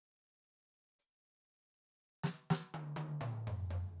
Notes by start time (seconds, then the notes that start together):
0.99 hi-hat pedal
2.24 snare
2.50 snare
2.74 high tom
2.96 high tom
3.21 mid tom
3.47 floor tom
3.70 floor tom